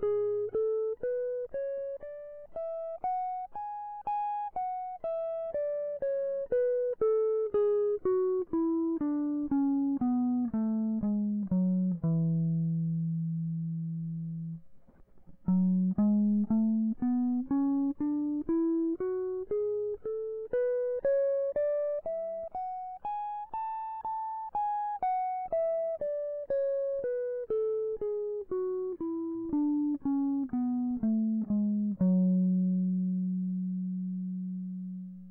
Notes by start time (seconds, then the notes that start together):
0.03 G#4
0.55 A4
1.04 B4
1.54 C#5
2.04 D5
2.56 E5
3.04 F#5
3.55 G#5
4.07 G#5
4.56 F#5
5.04 E5
5.55 D5
6.02 C#5
6.52 B4
7.02 A4
7.54 G#4
8.06 F#4
8.53 E4
9.01 D4
9.52 C#4
10.02 B3
10.54 A3
11.03 G#3
11.52 F#3
12.05 E3
15.49 F#3
15.99 G#3
16.51 A3
17.03 B3
17.51 C#4
18.01 D4
18.49 E4
19.01 F#4
19.51 G#4
20.07 A4
20.54 B4
21.05 C#5
21.56 D5
22.06 E5
22.55 F#5
23.05 G#5
23.54 A5
24.05 A5
24.55 G#5
25.03 F#5
25.53 E5
26.01 D5
26.50 C#5
27.04 B4
27.51 A4
28.02 G#4
28.52 F#4
29.01 E4
29.53 D4
30.06 C#4
30.54 B3
31.04 A3
31.51 G#3
32.02 F#3